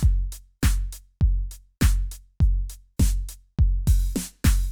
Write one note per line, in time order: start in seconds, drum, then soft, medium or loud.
0.01 kick loud
0.01 hi-hat pedal medium
0.33 closed hi-hat loud
0.62 kick loud
0.62 snare loud
0.62 hi-hat pedal soft
0.93 closed hi-hat loud
1.22 kick loud
1.22 closed hi-hat soft
1.52 closed hi-hat loud
1.81 kick loud
1.81 snare loud
1.81 hi-hat pedal soft
2.12 closed hi-hat loud
2.41 kick loud
2.41 closed hi-hat soft
2.70 closed hi-hat loud
2.97 kick loud
2.97 snare loud
2.97 hi-hat pedal soft
3.29 closed hi-hat loud
3.59 kick loud
3.59 closed hi-hat soft
3.88 open hi-hat loud
3.88 kick loud
4.13 snare loud
4.13 hi-hat pedal medium
4.18 closed hi-hat soft
4.45 open hi-hat loud
4.45 kick loud
4.45 snare loud